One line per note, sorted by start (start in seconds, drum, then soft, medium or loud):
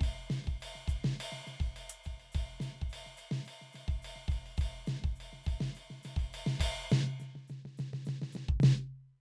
0.01 kick medium
0.01 hi-hat pedal medium
0.01 ride bell medium
0.30 snare medium
0.30 hi-hat pedal soft
0.30 ride bell soft
0.44 kick soft
0.44 snare soft
0.44 ride soft
0.60 hi-hat pedal soft
0.60 ride bell medium
0.75 snare soft
0.88 kick medium
0.88 hi-hat pedal loud
0.88 ride soft
1.04 snare medium
1.04 ride soft
1.20 hi-hat pedal medium
1.20 ride loud
1.32 snare soft
1.47 snare soft
1.47 hi-hat pedal medium
1.47 ride soft
1.60 kick soft
1.60 ride soft
1.76 hi-hat pedal medium
1.76 ride bell medium
1.90 open hi-hat loud
2.04 kick soft
2.04 hi-hat pedal medium
2.04 ride bell soft
2.17 snare soft
2.17 ride soft
2.32 kick soft
2.32 hi-hat pedal medium
2.32 ride bell medium
2.60 snare medium
2.60 hi-hat pedal medium
2.60 ride bell soft
2.75 snare soft
2.75 ride soft
2.82 kick soft
2.90 hi-hat pedal medium
2.90 ride bell medium
3.06 snare soft
3.17 hi-hat pedal medium
3.17 ride soft
3.31 snare medium
3.31 ride soft
3.45 hi-hat pedal medium
3.45 ride bell medium
3.62 snare soft
3.73 snare soft
3.73 hi-hat pedal medium
3.73 ride soft
3.88 kick soft
3.88 ride soft
4.02 hi-hat pedal medium
4.02 ride medium
4.16 snare soft
4.28 kick medium
4.28 hi-hat pedal medium
4.28 ride soft
4.46 ride soft
4.57 kick medium
4.57 hi-hat pedal medium
4.57 ride soft
4.57 ride bell medium
4.87 snare medium
4.87 hi-hat pedal medium
4.87 ride bell soft
5.02 kick soft
5.02 snare soft
5.02 ride soft
5.16 hi-hat pedal medium
5.20 ride bell medium
5.33 snare soft
5.44 kick soft
5.44 hi-hat pedal soft
5.48 ride soft
5.61 snare medium
5.61 ride soft
5.75 snare soft
5.75 hi-hat pedal medium
5.75 ride soft
5.90 snare soft
6.03 snare soft
6.03 hi-hat pedal medium
6.03 ride soft
6.16 kick medium
6.16 ride soft
6.33 hi-hat pedal medium
6.33 ride bell medium
6.47 snare medium
6.60 kick medium
6.60 hi-hat pedal medium
6.60 ride loud
6.90 snare loud
6.90 floor tom loud
6.90 hi-hat pedal medium
7.20 snare soft
7.20 floor tom soft
7.20 hi-hat pedal medium
7.35 snare soft
7.35 floor tom soft
7.48 snare soft
7.48 floor tom soft
7.48 hi-hat pedal soft
7.65 snare soft
7.65 floor tom soft
7.77 snare soft
7.77 floor tom medium
7.77 hi-hat pedal medium
7.93 snare soft
7.93 floor tom medium
8.05 snare medium
8.05 floor tom medium
8.05 hi-hat pedal medium
8.22 snare medium
8.22 floor tom medium
8.32 snare medium
8.32 hi-hat pedal medium
8.37 floor tom medium
8.49 kick medium
8.60 snare loud
8.60 floor tom loud
8.60 hi-hat pedal soft